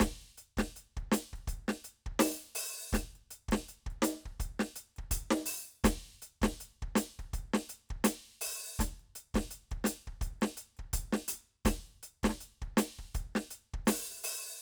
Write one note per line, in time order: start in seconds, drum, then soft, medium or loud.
0.00 closed hi-hat medium
0.00 kick medium
0.00 snare loud
0.21 closed hi-hat soft
0.37 closed hi-hat medium
0.57 kick medium
0.57 snare medium
0.57 closed hi-hat medium
0.76 closed hi-hat medium
0.97 kick medium
0.97 closed hi-hat soft
1.12 closed hi-hat loud
1.12 snare loud
1.33 kick soft
1.33 closed hi-hat soft
1.47 closed hi-hat medium
1.47 kick medium
1.68 snare medium
1.68 closed hi-hat soft
1.84 closed hi-hat medium
2.06 kick soft
2.19 open hi-hat loud
2.19 snare loud
2.55 open hi-hat loud
2.93 open hi-hat loud
2.93 kick medium
2.93 snare medium
2.93 hi-hat pedal soft
3.15 closed hi-hat soft
3.30 closed hi-hat medium
3.48 kick medium
3.48 snare loud
3.48 closed hi-hat medium
3.68 closed hi-hat medium
3.86 kick medium
3.86 closed hi-hat soft
4.02 closed hi-hat loud
4.02 snare loud
4.25 kick soft
4.40 closed hi-hat medium
4.40 kick medium
4.59 snare medium
4.59 closed hi-hat soft
4.76 closed hi-hat medium
4.96 kick soft
4.96 closed hi-hat soft
5.11 closed hi-hat loud
5.11 kick medium
5.30 snare loud
5.46 open hi-hat loud
5.84 closed hi-hat medium
5.84 kick medium
5.84 snare loud
5.84 hi-hat pedal soft
6.06 closed hi-hat soft
6.22 closed hi-hat medium
6.41 kick medium
6.41 snare loud
6.41 closed hi-hat medium
6.60 closed hi-hat medium
6.82 kick medium
6.82 closed hi-hat soft
6.95 closed hi-hat loud
6.95 snare loud
7.19 kick soft
7.19 closed hi-hat soft
7.33 closed hi-hat medium
7.33 kick medium
7.54 snare loud
7.54 closed hi-hat soft
7.69 closed hi-hat medium
7.89 kick medium
7.89 closed hi-hat soft
8.04 open hi-hat loud
8.04 snare loud
8.41 open hi-hat loud
8.46 kick soft
8.62 open hi-hat soft
8.78 closed hi-hat loud
8.78 kick medium
8.78 snare medium
8.78 hi-hat pedal soft
8.99 closed hi-hat soft
9.15 closed hi-hat medium
9.34 kick medium
9.34 snare loud
9.34 closed hi-hat soft
9.51 closed hi-hat medium
9.71 kick medium
9.71 closed hi-hat soft
9.84 closed hi-hat loud
9.84 snare loud
10.06 kick soft
10.06 closed hi-hat soft
10.21 closed hi-hat medium
10.21 kick medium
10.41 snare loud
10.41 closed hi-hat soft
10.57 closed hi-hat medium
10.77 kick soft
10.77 closed hi-hat soft
10.93 closed hi-hat loud
10.93 kick medium
11.12 snare loud
11.28 open hi-hat loud
11.32 kick soft
11.65 open hi-hat loud
11.65 kick medium
11.65 snare loud
11.65 hi-hat pedal soft
11.86 closed hi-hat soft
12.03 closed hi-hat medium
12.23 kick medium
12.23 snare loud
12.23 closed hi-hat soft
12.29 snare medium
12.40 closed hi-hat medium
12.62 kick soft
12.62 closed hi-hat soft
12.77 closed hi-hat loud
12.77 snare loud
12.98 kick soft
12.98 closed hi-hat soft
13.14 closed hi-hat medium
13.14 kick medium
13.35 snare medium
13.35 closed hi-hat soft
13.50 closed hi-hat medium
13.71 kick medium
13.71 closed hi-hat soft
13.85 open hi-hat loud
13.85 snare loud
13.85 hi-hat pedal soft
14.24 open hi-hat loud